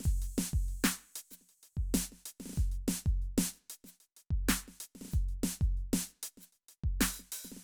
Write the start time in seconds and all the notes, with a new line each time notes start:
0.01 snare, hi-hat pedal, crash
0.06 kick
0.22 closed hi-hat
0.39 snare
0.53 kick, closed hi-hat
0.69 closed hi-hat
0.84 snare
0.99 closed hi-hat
1.16 closed hi-hat
1.31 snare, hi-hat pedal
1.42 snare
1.49 closed hi-hat
1.64 closed hi-hat
1.77 kick
1.95 open hi-hat, snare
2.12 snare
2.26 open hi-hat
2.41 snare
2.46 snare
2.50 snare
2.54 snare, closed hi-hat, hi-hat pedal
2.58 kick, snare
2.72 closed hi-hat
2.89 snare
3.07 kick, closed hi-hat
3.22 closed hi-hat
3.38 snare
3.54 closed hi-hat
3.70 open hi-hat
3.85 snare, hi-hat pedal
4.01 closed hi-hat
4.17 closed hi-hat
4.31 kick
4.49 open hi-hat, snare
4.68 snare
4.81 open hi-hat
4.96 snare
5.02 snare
5.05 snare
5.09 snare, hi-hat pedal
5.13 kick, snare, closed hi-hat
5.29 closed hi-hat
5.44 snare
5.62 kick, closed hi-hat
5.78 closed hi-hat
5.94 snare
6.07 closed hi-hat
6.24 closed hi-hat
6.38 snare, hi-hat pedal
6.53 closed hi-hat
6.69 closed hi-hat
6.84 kick
7.01 open hi-hat, snare
7.20 snare
7.33 open hi-hat
7.45 snare
7.52 snare
7.57 snare